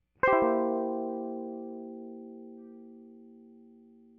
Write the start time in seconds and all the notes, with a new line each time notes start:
0.23 C5
0.28 G4
0.33 E4
0.43 A#3